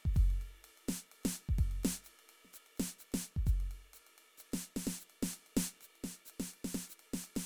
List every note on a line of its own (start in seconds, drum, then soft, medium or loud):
0.06 kick medium
0.14 kick medium
0.14 hi-hat pedal soft
0.14 ride medium
0.31 ride soft
0.42 ride medium
0.65 ride medium
0.78 ride soft
0.89 snare medium
0.89 ride medium
1.12 ride medium
1.24 snare medium
1.24 ride soft
1.36 ride medium
1.50 kick medium
1.59 kick medium
1.59 ride medium
1.72 ride medium
1.84 snare medium
1.84 ride medium
2.04 hi-hat pedal medium
2.04 ride medium
2.20 ride soft
2.45 snare soft
2.54 hi-hat pedal medium
2.54 ride medium
2.67 ride soft
2.76 hi-hat pedal soft
2.76 ride soft
2.80 snare medium
2.99 hi-hat pedal medium
2.99 ride medium
3.13 snare medium
3.13 ride soft
3.23 ride soft
3.37 kick soft
3.47 kick medium
3.47 hi-hat pedal medium
3.47 ride medium
3.61 ride soft
3.72 ride medium
3.94 hi-hat pedal medium
3.94 ride medium
4.07 ride medium
4.19 ride medium
4.38 hi-hat pedal medium
4.38 ride medium
4.53 snare medium
4.53 ride soft
4.64 ride soft
4.77 snare medium
4.86 snare medium
4.86 ride medium
4.99 hi-hat pedal medium
4.99 ride medium
5.11 ride medium
5.23 snare medium
5.34 ride medium
5.47 ride soft
5.57 snare medium
5.57 ride medium
5.82 hi-hat pedal medium
5.82 ride medium
5.96 ride soft
6.05 snare soft
6.05 ride medium
6.26 hi-hat pedal medium
6.31 ride medium
6.40 snare medium
6.40 ride medium
6.54 ride medium
6.65 snare medium
6.76 ride medium
6.88 hi-hat pedal medium
6.88 ride soft
7.00 ride medium
7.14 snare medium
7.25 ride medium
7.36 snare medium
7.36 ride medium